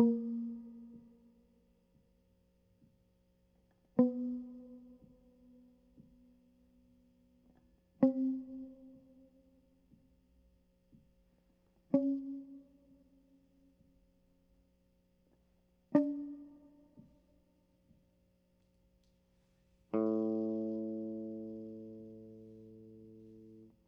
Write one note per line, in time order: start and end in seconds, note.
0.00 1.75 A#3
3.99 5.25 B3
8.03 9.35 C4
8.03 8.27 C4
11.95 13.28 C#4
15.95 17.12 D4
15.95 16.22 D4
19.95 23.76 A2